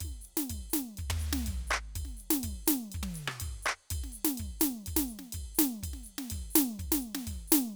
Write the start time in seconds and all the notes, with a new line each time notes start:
0.01 kick, ride bell
0.05 kick, snare
0.22 hi-hat pedal, ride
0.37 snare
0.50 kick, ride bell
0.56 kick
0.70 snare, hi-hat pedal
0.98 kick, ride bell
1.05 kick
1.10 floor tom
1.20 hi-hat pedal, ride
1.33 snare
1.47 kick, ride bell
1.54 kick
1.68 percussion, hi-hat pedal
1.96 kick, ride bell
2.02 kick, snare
2.17 hi-hat pedal, ride
2.31 snare
2.44 kick, ride bell
2.50 kick
2.66 snare, hi-hat pedal
2.92 kick, ride bell
3.01 kick, high tom
3.15 hi-hat pedal, ride
3.28 cross-stick
3.40 kick, ride bell
3.48 kick
3.63 percussion, hi-hat pedal
3.91 kick, ride bell
3.98 kick
4.04 snare
4.13 hi-hat pedal, ride
4.25 snare
4.34 hi-hat pedal, ride bell
4.40 kick
4.46 kick
4.60 snare, hi-hat pedal
4.82 hi-hat pedal
4.87 kick, ride bell
4.94 kick, snare
5.08 hi-hat pedal, ride
5.19 snare
5.33 kick, ride bell
5.40 kick
5.55 hi-hat pedal
5.59 snare
5.83 kick, ride bell
5.89 kick
5.94 snare
6.04 hi-hat pedal, ride
6.19 snare
6.31 kick, ride bell
6.38 kick
6.51 hi-hat pedal
6.56 snare
6.80 kick, ride bell
6.85 kick
6.92 snare
6.99 hi-hat pedal, ride
7.15 snare
7.27 kick, ride bell
7.33 kick
7.48 hi-hat pedal
7.52 snare